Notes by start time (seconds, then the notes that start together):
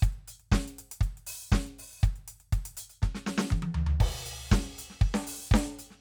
0.01 kick, closed hi-hat, hi-hat pedal
0.13 closed hi-hat
0.24 kick
0.29 closed hi-hat
0.41 closed hi-hat
0.53 kick, snare
0.69 closed hi-hat
0.79 closed hi-hat
0.92 closed hi-hat
1.02 kick, closed hi-hat
1.18 closed hi-hat
1.27 open hi-hat
1.43 open hi-hat
1.49 kick, snare, hi-hat pedal
1.67 closed hi-hat
1.79 open hi-hat
1.94 open hi-hat
2.01 kick, hi-hat pedal
2.05 closed hi-hat
2.17 closed hi-hat
2.29 closed hi-hat
2.41 closed hi-hat
2.53 kick, closed hi-hat
2.66 closed hi-hat
2.76 closed hi-hat, kick
2.90 closed hi-hat
3.03 kick, snare
3.16 snare
3.27 snare
3.39 snare
3.51 kick, high tom
3.63 high tom
3.75 floor tom
3.87 floor tom
4.01 kick, crash
4.27 closed hi-hat
4.50 kick, snare, hi-hat pedal
4.60 snare
4.79 closed hi-hat
4.91 snare
5.02 kick, closed hi-hat
5.15 snare
5.23 snare
5.28 open hi-hat
5.49 kick, hi-hat pedal
5.55 snare, closed hi-hat
5.79 closed hi-hat
5.91 snare